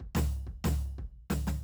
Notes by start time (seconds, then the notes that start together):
0.00 kick
0.15 snare, floor tom
0.47 kick
0.64 snare, floor tom
0.98 kick
1.30 snare, floor tom
1.47 snare, floor tom